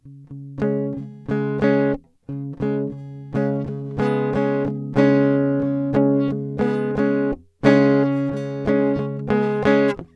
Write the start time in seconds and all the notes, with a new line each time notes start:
0.06 C#3
0.32 C#3
0.59 C#3 G#3
0.65 C#4
0.85 G#3
0.94 C#3
1.30 C#3 G#3 B3
1.60 C#3 G#3
1.65 C#4
2.30 C#3 G#3 C#4
2.62 C#3 G#3
2.66 C#4
3.34 C#3 G#3 C#4
3.66 C#3 G#3
3.99 C#3 G#3 B3
4.34 C#3 G#3
4.38 C#4
4.66 C#3 G#3
4.95 C#3 G#3
4.99 C#4
5.61 C#3 G#3
5.94 C#3 G#3 C#4
6.28 C#3 G#3
6.60 G#3 B3
6.97 G#3 C#4
7.64 C#3 G#3
7.69 G#4
8.30 C#3
8.35 G#3
8.67 G#3 C#4
8.97 C#3 G#3
9.31 G#3 B3
9.67 G#3 C#4